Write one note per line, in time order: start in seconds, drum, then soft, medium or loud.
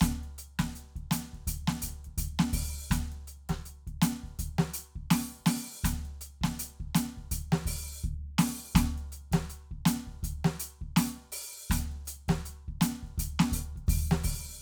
0.01 open hi-hat loud
0.01 kick medium
0.01 snare loud
0.01 hi-hat pedal soft
0.23 closed hi-hat soft
0.38 closed hi-hat medium
0.59 kick medium
0.59 snare loud
0.59 closed hi-hat medium
0.75 closed hi-hat medium
0.96 kick medium
0.96 closed hi-hat soft
1.11 closed hi-hat loud
1.11 snare loud
1.34 kick soft
1.34 closed hi-hat soft
1.47 closed hi-hat loud
1.47 kick medium
1.68 snare loud
1.82 closed hi-hat loud
1.82 kick medium
2.05 kick soft
2.05 closed hi-hat soft
2.18 closed hi-hat loud
2.18 kick medium
2.25 hi-hat pedal soft
2.39 snare loud
2.53 open hi-hat loud
2.53 kick medium
2.91 closed hi-hat loud
2.91 kick medium
2.91 snare loud
2.91 hi-hat pedal soft
3.12 closed hi-hat soft
3.27 closed hi-hat medium
3.49 kick medium
3.49 snare medium
3.49 closed hi-hat medium
3.66 closed hi-hat medium
3.87 kick medium
3.87 closed hi-hat soft
4.02 closed hi-hat loud
4.02 snare loud
4.24 kick soft
4.24 closed hi-hat soft
4.39 closed hi-hat loud
4.39 kick medium
4.59 snare loud
4.74 closed hi-hat loud
4.96 kick medium
5.11 open hi-hat loud
5.11 snare loud
5.39 kick soft
5.46 open hi-hat loud
5.46 snare loud
5.84 closed hi-hat loud
5.84 kick medium
5.84 snare loud
5.84 hi-hat pedal soft
6.05 closed hi-hat soft
6.21 closed hi-hat medium
6.41 kick medium
6.41 snare loud
6.41 closed hi-hat medium
6.59 closed hi-hat loud
6.80 kick medium
6.95 closed hi-hat loud
6.95 snare loud
7.18 kick soft
7.31 closed hi-hat loud
7.31 kick medium
7.52 snare loud
7.66 open hi-hat loud
7.66 kick medium
8.01 kick medium
8.01 hi-hat pedal soft
8.08 crash soft
8.08 ride soft
8.38 open hi-hat loud
8.38 snare loud
8.75 open hi-hat loud
8.75 kick loud
8.75 snare loud
8.75 hi-hat pedal soft
8.95 kick soft
8.95 closed hi-hat soft
9.12 closed hi-hat medium
9.32 kick medium
9.32 snare loud
9.32 closed hi-hat medium
9.50 closed hi-hat medium
9.71 kick medium
9.86 closed hi-hat loud
9.86 snare loud
10.07 kick soft
10.23 closed hi-hat medium
10.23 kick medium
10.45 snare loud
10.60 closed hi-hat loud
10.81 kick medium
10.96 open hi-hat loud
10.96 snare loud
10.96 hi-hat pedal soft
11.27 kick soft
11.32 open hi-hat loud
11.70 open hi-hat loud
11.70 kick loud
11.70 snare loud
11.74 hi-hat pedal soft
11.91 closed hi-hat soft
12.05 closed hi-hat loud
12.05 hi-hat pedal soft
12.28 kick medium
12.28 snare loud
12.28 closed hi-hat soft
12.46 closed hi-hat medium
12.68 kick medium
12.68 closed hi-hat soft
12.81 closed hi-hat loud
12.81 snare loud
13.03 kick soft
13.03 closed hi-hat soft
13.18 closed hi-hat loud
13.18 kick medium
13.39 snare loud
13.52 open hi-hat loud
13.52 kick medium
13.57 hi-hat pedal soft
13.76 kick soft
13.76 closed hi-hat soft
13.87 open hi-hat loud
13.87 kick loud
13.87 hi-hat pedal soft
14.11 snare loud
14.24 open hi-hat loud
14.24 kick medium